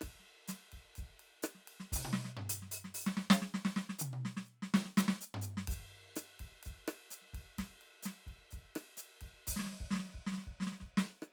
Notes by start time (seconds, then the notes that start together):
0.01 kick, cross-stick, hi-hat pedal, ride
0.08 kick
0.20 snare
0.48 snare, hi-hat pedal, ride
0.72 kick, ride
0.95 kick, hi-hat pedal, ride
1.19 ride
1.42 cross-stick, hi-hat pedal, ride
1.55 snare
1.67 ride
1.80 snare
1.92 kick, hi-hat pedal
1.96 kick, high tom
2.01 kick
2.05 high tom
2.13 snare
2.25 snare
2.37 mid tom
2.49 closed hi-hat
2.62 snare
2.71 open hi-hat, hi-hat pedal
2.84 snare
2.94 open hi-hat
3.02 hi-hat pedal
3.06 snare
3.17 snare
3.28 kick, snare, hi-hat pedal
3.42 snare
3.54 snare
3.65 snare
3.76 snare
3.89 snare
3.99 hi-hat pedal, high tom
4.13 high tom
4.25 snare
4.37 snare
4.45 hi-hat pedal
4.62 snare
4.74 snare
4.85 snare
4.97 snare, hi-hat pedal
5.08 snare
5.21 hi-hat pedal
5.34 mid tom
5.41 hi-hat pedal
5.57 snare
5.67 kick, hi-hat pedal, ride
5.79 kick
6.16 cross-stick, hi-hat pedal, ride
6.39 kick, ride
6.45 kick, snare
6.63 kick, hi-hat pedal, ride
6.72 kick
6.88 cross-stick, ride
7.10 hi-hat pedal, ride
7.21 snare
7.33 kick, ride
7.39 kick
7.58 kick, snare, hi-hat pedal, ride
7.63 kick
7.81 ride
8.03 snare, hi-hat pedal, ride
8.25 kick, snare, ride
8.32 kick
8.37 snare
8.51 kick, hi-hat pedal, ride
8.58 kick
8.75 cross-stick, ride
8.97 hi-hat pedal, ride
9.21 kick, ride
9.27 kick, snare
9.47 kick, hi-hat pedal
9.56 snare
9.59 snare
9.64 snare
9.66 snare
9.70 snare
9.72 snare
9.80 kick
9.85 kick
9.91 snare
9.93 snare
9.95 snare
9.99 snare
10.04 snare
10.09 snare
10.14 kick
10.19 kick
10.27 snare
10.32 snare
10.33 snare
10.37 snare
10.40 snare
10.47 kick
10.52 kick
10.60 snare
10.62 snare
10.67 snare
10.72 snare
10.80 kick, snare
10.87 kick
10.97 snare
11.22 cross-stick